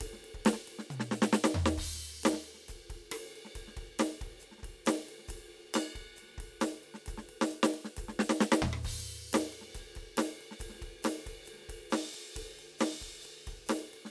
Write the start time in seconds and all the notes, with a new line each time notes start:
0.01 kick, hi-hat pedal, ride
0.14 snare
0.19 snare
0.25 ride
0.35 kick
0.46 snare, hi-hat pedal, ride
0.54 snare
0.68 ride
0.79 snare
0.91 hi-hat pedal, mid tom
1.01 snare
1.12 snare
1.23 snare
1.34 snare, hi-hat pedal
1.45 snare
1.55 floor tom
1.67 snare
1.77 kick, hi-hat pedal, crash
1.85 kick
1.88 kick
1.95 snare
2.24 snare, hi-hat pedal, ride
2.34 snare
2.45 ride
2.55 snare
2.62 snare
2.69 kick, hi-hat pedal, ride
2.75 snare
2.90 kick, ride
3.12 cross-stick, hi-hat pedal, ride
3.36 ride
3.46 snare
3.56 kick, hi-hat pedal, ride
3.68 snare
3.77 kick, ride
3.84 kick
3.99 snare, hi-hat pedal, ride
4.22 kick, ride
4.28 kick
4.40 hi-hat pedal, ride
4.52 snare
4.59 snare
4.64 kick, ride
4.70 kick
4.86 snare, hi-hat pedal, ride
5.09 ride
5.20 snare
5.29 kick, snare, hi-hat pedal, ride
5.53 ride
5.74 snare, hi-hat pedal, ride bell
5.96 kick, ride
6.17 hi-hat pedal, ride
6.23 snare
6.27 snare
6.30 snare
6.35 kick, snare
6.41 kick, ride
6.61 snare, hi-hat pedal, ride
6.84 ride
6.95 snare
7.07 kick, hi-hat pedal, ride
7.15 kick, snare
7.30 ride
7.42 snare
7.51 hi-hat pedal, ride
7.64 snare
7.75 ride
7.85 snare
7.97 kick, hi-hat pedal, ride
8.05 kick
8.09 snare
8.20 snare
8.30 snare
8.41 snare, hi-hat pedal
8.53 snare
8.62 kick, floor tom
8.74 cross-stick
8.84 kick, hi-hat pedal, crash
8.99 snare
9.04 snare
9.34 snare, hi-hat pedal, ride
9.53 ride
9.62 snare
9.69 snare
9.75 kick, hi-hat pedal, ride
9.80 snare
9.83 snare
9.94 kick, snare, ride
10.05 kick
10.18 snare, hi-hat pedal, ride
10.42 ride
10.52 snare
10.60 kick, hi-hat pedal, ride
10.67 kick, snare
10.75 snare
10.79 kick, snare
10.83 ride
10.89 kick
11.03 snare, hi-hat pedal, ride
11.27 kick, ride
11.46 hi-hat pedal, ride
11.54 snare
11.58 snare
11.62 snare
11.70 kick, ride
11.91 snare, hi-hat pedal, ride
12.15 ride
12.35 kick, hi-hat pedal, ride
12.42 kick
12.60 ride
12.79 snare, hi-hat pedal, ride
13.02 kick, ride
13.22 hi-hat pedal, ride
13.38 snare
13.48 kick, ride
13.67 snare, hi-hat pedal, ride
13.94 ride
14.06 snare